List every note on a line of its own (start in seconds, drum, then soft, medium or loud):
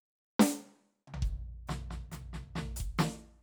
0.39 open hi-hat loud
0.39 snare loud
1.07 high tom medium
1.14 floor tom medium
1.22 kick medium
1.22 hi-hat pedal soft
1.67 snare medium
1.67 floor tom medium
1.67 hi-hat pedal soft
1.90 snare soft
1.90 floor tom medium
2.12 snare soft
2.12 floor tom medium
2.12 hi-hat pedal medium
2.33 snare soft
2.33 floor tom medium
2.55 snare medium
2.55 floor tom medium
2.76 closed hi-hat medium
2.76 kick medium
2.98 snare loud
2.98 hi-hat pedal medium